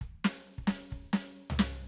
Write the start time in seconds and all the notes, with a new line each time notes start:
0.01 kick, closed hi-hat
0.24 closed hi-hat, snare
0.47 closed hi-hat
0.58 kick
0.67 closed hi-hat, snare
0.91 closed hi-hat, kick
1.13 closed hi-hat, snare
1.33 snare, closed hi-hat
1.50 floor tom
1.59 snare
1.74 snare